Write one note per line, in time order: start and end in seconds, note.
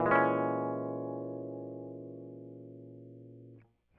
0.00 3.75 A#2
0.00 3.64 E3
0.07 3.67 G#3
0.12 3.62 C#4
0.16 1.17 E4